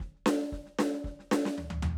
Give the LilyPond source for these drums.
\new DrumStaff \drummode { \time 4/4 \tempo 4 = 114 <bd sn>16 sn16 sn16 sn16 <bd sn>16 sn16 sn16 sn16 <bd sn>16 sn16 sn16 sn16 tomfh16 tomfh16 tomfh8 | }